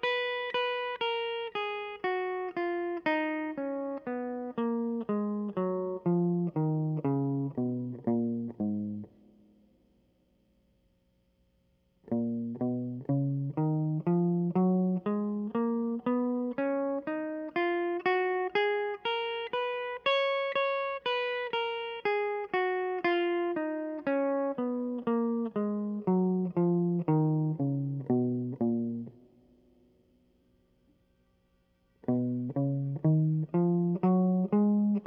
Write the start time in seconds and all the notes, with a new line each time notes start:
0.03 B4
0.54 B4
1.01 A#4
1.55 G#4
2.04 F#4
2.56 F4
3.06 D#4
3.58 C#4
4.07 B3
4.58 A#3
5.09 G#3
5.57 F#3
6.06 F3
6.57 D#3
7.06 C#3
7.59 B2
7.96 A#2
8.08 A#2
8.61 G#2
12.13 A#2
12.62 B2
13.10 C#3
13.58 D#3
14.07 F3
14.56 F#3
15.06 G#3
15.55 A#3
16.07 B3
16.58 C#4
17.07 D#4
17.56 F4
18.06 F#4
18.55 G#4
19.05 A#4
19.53 B4
20.06 C#5
20.55 C#5
21.06 B4
21.53 A#4
22.05 G#4
22.54 F#4
23.04 F4
23.56 D#4
24.07 C#4
24.59 B3
25.07 A#3
25.56 G#3
26.08 F#3
26.57 F3
27.09 D#3
27.61 C#3
28.11 B2
28.62 A#2
32.09 B2
32.57 C#3
33.05 D#3
33.55 F3
34.04 F#3
34.53 G#3